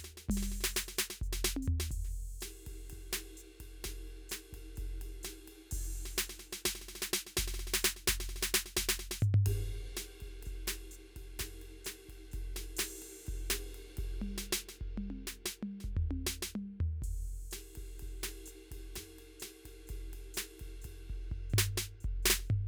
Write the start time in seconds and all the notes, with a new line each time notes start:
0.01 snare, hi-hat pedal
0.17 snare
0.29 kick, hi-hat pedal, mid tom
0.37 kick, snare
0.43 snare
0.52 snare
0.61 snare
0.64 snare
0.76 snare
0.88 snare
0.98 snare, hi-hat pedal
1.10 snare
1.22 kick, hi-hat pedal
1.30 kick, snare
1.45 snare
1.57 high tom
1.63 hi-hat pedal
1.68 floor tom
1.80 snare
1.89 kick, hi-hat pedal, crash
1.98 kick
2.05 snare
2.41 snare, hi-hat pedal, ride
2.67 kick, ride
2.72 kick
2.79 snare
2.90 kick, hi-hat pedal, ride
2.98 kick
3.13 snare, ride
3.37 snare, hi-hat pedal
3.60 kick, ride
3.65 kick
3.84 kick, snare, hi-hat pedal, ride
3.91 kick
4.08 ride
4.29 snare, hi-hat pedal, ride
4.53 kick, ride
4.58 kick
4.76 kick, hi-hat pedal, ride
5.01 ride
5.23 snare, hi-hat pedal, ride
5.45 kick, ride
5.71 kick, hi-hat pedal, ride
5.81 kick
6.06 snare
6.18 snare
6.30 snare
6.53 snare
6.65 kick, snare
6.75 snare
6.82 snare
6.89 snare
6.95 snare
7.00 snare
7.02 snare
7.13 snare
7.27 snare
7.37 kick, snare
7.48 snare
7.53 snare, hi-hat pedal
7.59 snare
7.67 snare
7.74 snare
7.82 snare, hi-hat pedal
7.96 snare
8.08 kick, snare
8.20 snare
8.25 hi-hat pedal
8.29 snare
8.36 snare
8.42 snare
8.54 snare, hi-hat pedal
8.66 snare
8.77 kick, snare
8.83 kick
8.89 snare
8.99 snare
9.11 snare
9.20 hi-hat pedal, floor tom
9.34 floor tom
9.46 kick, hi-hat pedal, ride
9.97 snare, hi-hat pedal, ride
10.21 kick, ride
10.26 kick, snare
10.33 snare
10.43 hi-hat pedal, ride
10.47 kick
10.68 snare, ride
10.91 hi-hat pedal, ride
11.16 kick, ride
11.22 kick
11.39 kick, snare, hi-hat pedal, ride
11.46 kick
11.62 ride
11.85 snare, hi-hat pedal, ride
12.09 kick, ride
12.25 snare
12.32 kick, hi-hat pedal, ride
12.56 snare, ride
12.77 snare, hi-hat pedal, ride
13.02 snare, ride
13.10 snare
13.13 snare
13.27 kick, ride
13.50 snare, ride
13.75 ride
13.81 snare
13.86 snare
13.97 kick, ride
14.22 mid tom
14.38 snare
14.53 snare
14.69 snare
14.81 kick
14.87 kick
14.98 mid tom
15.10 high tom
15.27 snare
15.46 snare
15.63 mid tom
15.80 kick, snare
15.97 floor tom
16.11 high tom
16.27 snare
16.43 snare
16.56 mid tom
16.81 floor tom
17.02 kick, crash
17.09 kick
17.51 snare, hi-hat pedal, ride
17.75 kick, ride
17.83 kick
17.88 snare
17.92 snare
17.95 snare, hi-hat pedal
18.00 kick, ride
18.08 kick
18.23 snare, ride
18.46 hi-hat pedal, ride
18.60 snare
18.72 kick, ride
18.77 kick
18.95 kick, snare, hi-hat pedal, ride
19.03 kick
19.19 ride
19.40 snare, hi-hat pedal, ride
19.65 kick, ride
19.87 kick, hi-hat pedal, ride
19.96 kick
20.04 snare
20.13 ride
20.34 snare, hi-hat pedal, ride
20.60 kick, ride
20.67 kick
20.82 kick, hi-hat pedal, ride
20.90 kick
21.10 kick
21.15 kick
21.32 kick
21.40 kick
21.50 hi-hat pedal, floor tom
21.58 snare
21.78 snare
22.01 hi-hat pedal
22.05 kick
22.12 kick
22.14 kick
22.23 snare, hi-hat pedal
22.30 snare
22.39 snare
22.46 hi-hat pedal
22.50 kick, floor tom